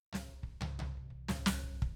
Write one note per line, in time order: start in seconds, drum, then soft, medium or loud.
0.13 snare medium
0.13 floor tom medium
0.28 kick soft
0.43 kick soft
0.61 floor tom loud
0.61 high tom loud
0.79 floor tom medium
0.79 high tom medium
0.97 kick soft
1.10 kick soft
1.28 snare medium
1.28 floor tom loud
1.46 snare loud
1.46 floor tom medium
1.63 kick soft
1.82 kick medium